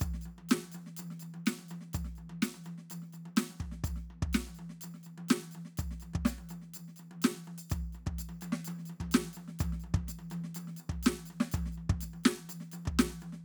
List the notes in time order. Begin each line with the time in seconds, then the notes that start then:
0.01 kick, high tom, percussion
0.15 snare
0.22 percussion
0.26 high tom
0.39 high tom
0.50 snare, percussion
0.64 high tom
0.73 high tom, percussion
0.87 snare
0.98 high tom, percussion
1.11 snare
1.21 high tom, percussion
1.35 high tom
1.47 snare, percussion
1.59 high tom
1.69 high tom, percussion
1.82 snare
1.94 kick, high tom, percussion
2.06 snare
2.16 high tom, percussion
2.30 high tom
2.43 snare, percussion
2.55 high tom
2.65 high tom, percussion
2.79 snare
2.91 high tom, percussion
3.03 snare
3.14 high tom, percussion
3.26 high tom
3.37 snare, percussion
3.51 high tom
3.59 kick, percussion
3.63 high tom
3.73 snare
3.85 kick, high tom, percussion
3.97 snare
4.11 high tom
4.23 kick, high tom
4.34 snare, percussion
4.48 high tom
4.55 percussion
4.60 high tom
4.70 snare
4.82 high tom, percussion
4.95 snare
5.04 high tom, percussion
5.19 high tom
5.29 snare, percussion
5.43 high tom
5.52 high tom, percussion
5.66 snare
5.78 kick, high tom, percussion
5.92 snare
6.01 high tom, percussion
6.15 kick, high tom
6.26 snare, percussion
6.39 high tom
6.50 high tom, percussion
6.63 snare
6.75 high tom, percussion
6.89 snare
6.97 high tom, percussion
7.12 high tom
7.23 snare, percussion
7.36 high tom
7.45 high tom, percussion
7.59 percussion
7.71 kick, high tom, percussion
7.93 high tom, percussion
8.07 kick, high tom
8.19 snare, percussion
8.30 high tom
8.42 high tom, percussion
8.53 snare
8.65 high tom, percussion
8.80 snare
8.86 high tom, percussion
9.01 kick, high tom
9.12 snare, percussion
9.26 high tom
9.34 high tom, percussion
9.49 snare
9.60 kick, high tom, percussion
9.73 snare
9.81 high tom, percussion
9.95 kick, high tom
10.09 snare, percussion
10.20 high tom
10.31 high tom, percussion
10.45 snare
10.55 high tom, percussion
10.68 snare
10.77 high tom, percussion
10.90 kick, high tom
11.04 snare, percussion
11.19 high tom
11.27 percussion
11.31 high tom
11.41 snare
11.53 kick, high tom, percussion
11.67 snare
11.73 percussion
11.79 high tom
11.90 kick, high tom
12.02 snare, percussion
12.14 high tom
12.25 snare, percussion
12.38 high tom
12.50 high tom, percussion
12.61 snare
12.73 high tom, percussion
12.86 kick, high tom
13.00 snare, percussion
13.08 snare, high tom
13.15 kick
13.21 high tom, percussion
13.33 snare